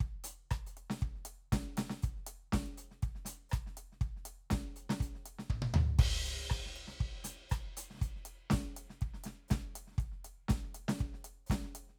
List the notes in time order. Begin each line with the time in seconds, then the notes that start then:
0.01 kick, closed hi-hat
0.25 closed hi-hat
0.51 kick, cross-stick, closed hi-hat
0.67 closed hi-hat
0.78 closed hi-hat
0.90 snare
1.02 kick, closed hi-hat
1.16 snare
1.26 closed hi-hat
1.53 kick, snare, closed hi-hat
1.78 snare, closed hi-hat
1.90 snare
2.03 closed hi-hat, kick
2.17 snare
2.27 closed hi-hat
2.53 kick, snare, closed hi-hat
2.67 closed hi-hat
2.78 closed hi-hat
2.92 snare
3.03 kick, closed hi-hat
3.16 snare
3.26 open hi-hat, snare
3.50 kick, cross-stick, closed hi-hat, hi-hat pedal
3.67 snare
3.78 closed hi-hat
3.93 snare
4.02 kick, closed hi-hat
4.17 snare
4.26 closed hi-hat
4.51 kick, snare, closed hi-hat
4.68 snare
4.77 closed hi-hat
4.90 snare
5.01 closed hi-hat, kick
5.15 snare
5.26 closed hi-hat
5.39 snare
5.50 kick, high tom
5.63 high tom
5.75 floor tom
5.99 kick, ride
6.24 closed hi-hat, snare
6.50 kick, cross-stick
6.66 snare
6.76 closed hi-hat
6.88 snare
7.00 closed hi-hat, kick
7.15 cross-stick
7.25 open hi-hat, snare
7.50 kick, cross-stick, closed hi-hat, hi-hat pedal
7.77 closed hi-hat
7.91 snare
7.95 snare
7.98 snare
8.00 closed hi-hat, kick, snare
8.16 snare
8.26 closed hi-hat
8.51 closed hi-hat, kick, snare
8.77 closed hi-hat
8.90 snare
9.02 kick, closed hi-hat
9.14 snare
9.24 snare, open hi-hat
9.49 kick, snare, closed hi-hat, hi-hat pedal
9.76 closed hi-hat
9.88 snare
9.92 snare
9.99 kick, closed hi-hat
10.12 snare
10.18 snare
10.25 kick, closed hi-hat
10.49 kick, snare, closed hi-hat
10.64 snare
10.75 closed hi-hat
10.89 snare
11.00 kick, closed hi-hat
11.14 snare
11.25 open hi-hat
11.47 kick, hi-hat pedal
11.52 snare, closed hi-hat
11.64 snare
11.76 closed hi-hat
11.89 snare